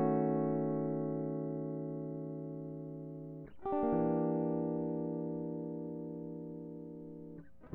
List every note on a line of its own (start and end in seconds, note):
0.01 3.45 D#3
0.01 3.42 A3
0.01 3.46 C#4
0.01 3.29 F#4
3.66 6.36 G4
3.73 7.37 D4
3.82 7.35 A#3
3.95 7.53 E3